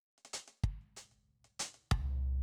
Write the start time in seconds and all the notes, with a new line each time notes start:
0.18 closed hi-hat
0.25 closed hi-hat
0.33 closed hi-hat
0.48 closed hi-hat
0.64 kick
0.81 closed hi-hat
0.97 closed hi-hat
1.11 closed hi-hat
1.44 closed hi-hat
1.59 closed hi-hat
1.74 closed hi-hat
1.91 kick, floor tom